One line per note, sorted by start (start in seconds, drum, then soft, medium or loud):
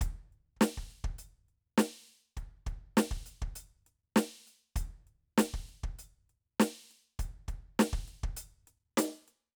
0.01 kick medium
0.01 closed hi-hat medium
0.32 closed hi-hat soft
0.56 kick soft
0.61 closed hi-hat medium
0.61 snare loud
0.77 kick soft
0.91 closed hi-hat soft
1.04 kick medium
1.18 closed hi-hat medium
1.48 closed hi-hat soft
1.78 closed hi-hat medium
1.78 snare loud
2.07 closed hi-hat soft
2.37 kick soft
2.37 closed hi-hat soft
2.66 kick medium
2.66 closed hi-hat soft
2.97 closed hi-hat medium
2.97 snare loud
3.11 kick medium
3.26 closed hi-hat soft
3.42 kick medium
3.56 closed hi-hat medium
3.86 closed hi-hat soft
4.16 closed hi-hat medium
4.16 snare loud
4.47 closed hi-hat soft
4.76 closed hi-hat medium
4.76 kick medium
5.07 closed hi-hat soft
5.38 closed hi-hat medium
5.38 kick soft
5.38 snare loud
5.54 kick medium
5.69 closed hi-hat soft
5.83 kick medium
5.99 closed hi-hat soft
6.29 closed hi-hat soft
6.60 closed hi-hat medium
6.60 snare loud
6.91 closed hi-hat soft
7.19 closed hi-hat medium
7.19 kick medium
7.48 kick medium
7.48 closed hi-hat soft
7.79 closed hi-hat medium
7.79 snare loud
7.93 kick medium
8.08 closed hi-hat soft
8.23 kick medium
8.37 closed hi-hat medium
8.67 closed hi-hat soft
8.97 closed hi-hat loud
8.97 snare loud
9.28 closed hi-hat soft